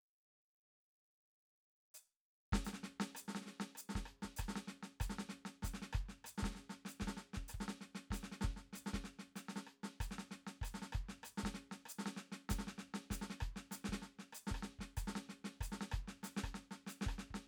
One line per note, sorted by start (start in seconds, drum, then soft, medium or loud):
1.94 hi-hat pedal medium
2.52 kick soft
2.52 snare medium
2.59 kick soft
2.65 snare soft
2.65 hi-hat pedal soft
2.73 snare soft
3.00 snare medium
3.15 cross-stick soft
3.15 hi-hat pedal medium
3.28 snare soft
3.35 snare soft
3.41 snare soft
3.46 snare soft
3.60 snare soft
3.75 cross-stick soft
3.75 hi-hat pedal medium
3.89 snare soft
3.95 kick soft
3.95 snare soft
4.05 cross-stick soft
4.22 kick soft
4.22 snare soft
4.36 kick soft
4.36 cross-stick medium
4.36 hi-hat pedal medium
4.48 snare soft
4.56 snare soft
4.67 snare soft
4.83 snare soft
5.00 kick soft
5.00 cross-stick medium
5.00 hi-hat pedal medium
5.10 snare soft
5.18 snare soft
5.29 snare soft
5.45 snare soft
5.62 kick soft
5.62 snare soft
5.62 hi-hat pedal medium
5.74 snare soft
5.82 snare soft
5.93 kick soft
5.93 cross-stick medium
6.01 kick soft
6.09 snare soft
6.24 cross-stick soft
6.24 hi-hat pedal medium
6.38 snare soft
6.42 kick soft
6.42 snare medium
6.51 snare soft
6.55 snare soft
6.69 snare soft
6.85 snare soft
6.85 hi-hat pedal soft
7.00 kick soft
7.00 snare soft
7.07 snare soft
7.17 snare soft
7.33 kick soft
7.33 snare soft
7.48 cross-stick soft
7.48 hi-hat pedal medium
7.54 kick soft
7.60 snare soft
7.68 snare soft
7.81 snare soft
7.95 snare soft
8.10 kick soft
8.10 snare soft
8.10 hi-hat pedal medium
8.23 snare soft
8.32 snare soft
8.41 kick soft
8.41 snare medium
8.50 kick soft
8.56 snare soft
8.73 snare soft
8.73 hi-hat pedal medium
8.86 snare soft
8.93 kick soft
8.93 snare soft
9.04 snare soft
9.19 snare soft
9.36 snare soft
9.36 hi-hat pedal soft
9.48 snare soft
9.56 snare soft
9.67 cross-stick soft
9.83 snare soft
10.00 kick soft
10.00 cross-stick medium
10.00 hi-hat pedal soft
10.11 snare soft
10.18 snare soft
10.31 snare soft
10.47 snare soft
10.61 kick soft
10.61 cross-stick medium
10.61 hi-hat pedal medium
10.74 snare soft
10.82 snare soft
10.92 kick soft
10.92 cross-stick medium
11.09 snare soft
11.23 cross-stick soft
11.23 hi-hat pedal medium
11.38 snare soft
11.43 kick soft
11.43 snare medium
11.54 snare soft
11.71 snare soft
11.85 cross-stick soft
11.85 hi-hat pedal medium
11.99 snare soft
12.06 snare soft
12.16 snare soft
12.32 snare soft
12.49 kick soft
12.49 snare medium
12.49 hi-hat pedal medium
12.59 snare soft
12.67 snare soft
12.78 snare soft
12.94 snare soft
13.10 kick soft
13.10 snare soft
13.10 hi-hat pedal medium
13.21 snare soft
13.30 snare soft
13.40 kick soft
13.40 cross-stick medium
13.56 snare soft
13.71 snare soft
13.71 hi-hat pedal medium
13.84 snare soft
13.89 kick soft
13.89 snare soft
14.02 snare soft
14.19 snare soft
14.33 cross-stick soft
14.33 hi-hat pedal medium
14.47 snare soft
14.51 kick soft
14.51 cross-stick soft
14.62 snare soft
14.79 kick soft
14.79 snare soft
14.97 kick soft
14.97 cross-stick soft
14.97 hi-hat pedal medium
15.07 snare soft
15.15 snare soft
15.29 snare soft
15.44 snare soft
15.61 kick soft
15.61 cross-stick soft
15.61 hi-hat pedal medium
15.72 snare soft
15.81 snare soft
15.92 kick soft
15.92 cross-stick medium
16.08 snare soft
16.23 snare soft
16.23 hi-hat pedal medium
16.37 snare medium
16.43 kick soft
16.43 cross-stick medium
16.54 snare soft
16.71 snare soft
16.87 snare soft
16.87 hi-hat pedal medium
17.01 snare medium
17.06 kick soft
17.06 cross-stick medium
17.18 snare soft
17.30 kick soft
17.30 snare soft